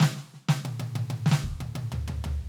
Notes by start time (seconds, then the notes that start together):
0.00 snare
0.02 snare
0.16 snare
0.34 snare
0.49 snare
0.65 high tom
0.79 high tom
0.95 high tom
1.10 high tom
1.26 snare
1.31 snare
1.43 kick
1.60 high tom
1.75 high tom
1.92 floor tom
2.08 floor tom
2.24 floor tom